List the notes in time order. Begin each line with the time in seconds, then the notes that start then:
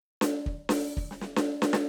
0.21 closed hi-hat, snare
0.46 kick
0.69 open hi-hat, snare
0.97 kick
1.11 snare
1.21 snare
1.37 snare
1.62 snare
1.67 hi-hat pedal
1.73 snare